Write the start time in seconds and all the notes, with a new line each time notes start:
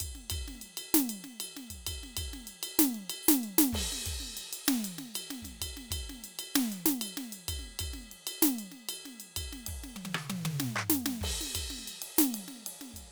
0.01 kick, ride bell
0.16 snare
0.31 kick, ride bell
0.38 kick
0.48 snare
0.56 snare
0.62 ride bell
0.78 ride bell
0.95 snare
1.10 ride bell
1.25 snare
1.41 hi-hat pedal, ride bell
1.57 snare
1.71 kick, ride bell
1.87 kick, ride bell
2.04 snare
2.17 kick, ride bell
2.34 snare
2.41 snare
2.48 ride bell
2.63 ride bell
2.80 snare
2.88 snare
2.95 ride
3.10 ride bell
3.24 hi-hat pedal
3.29 snare
3.44 ride bell
3.59 snare
3.69 snare
3.73 kick, crash
3.79 kick
3.93 snare
4.07 kick, ride
4.21 snare
4.27 snare
4.33 snare
4.38 ride bell
4.53 ride bell
4.66 snare, hi-hat pedal
4.85 ride bell
4.99 snare
5.15 hi-hat pedal, ride bell
5.31 snare
5.43 kick, snare, ride bell
5.62 kick, ride bell
5.78 snare
5.91 kick, ride bell
6.10 snare
6.17 snare
6.23 snare, ride bell
6.40 ride bell
6.55 snare, hi-hat pedal
6.73 ride bell
6.86 snare
7.02 hi-hat pedal, ride bell
7.18 snare
7.33 ride bell
7.49 kick, ride bell
7.60 snare
7.66 snare
7.80 kick, ride bell
7.94 snare
8.01 snare
8.12 ride
8.28 ride bell
8.43 snare, hi-hat pedal
8.59 ride bell
8.72 snare
8.89 hi-hat pedal, ride bell
9.06 snare
9.15 snare
9.21 snare, ride bell
9.37 kick, ride bell
9.53 snare
9.67 kick, ride
9.84 snare
9.97 high tom
10.06 high tom
10.15 cross-stick, hi-hat pedal
10.30 high tom
10.46 mid tom
10.61 snare
10.76 percussion
10.90 snare
11.07 snare
11.20 kick, hi-hat pedal, crash
11.28 kick
11.33 kick
11.41 snare
11.56 kick, ride bell
11.71 snare
11.79 snare
11.88 ride bell
12.03 ride
12.17 snare, hi-hat pedal
12.27 snare
12.35 ride
12.49 snare
12.57 snare
12.67 hi-hat pedal, ride
12.82 snare
12.92 kick, snare
12.97 ride bell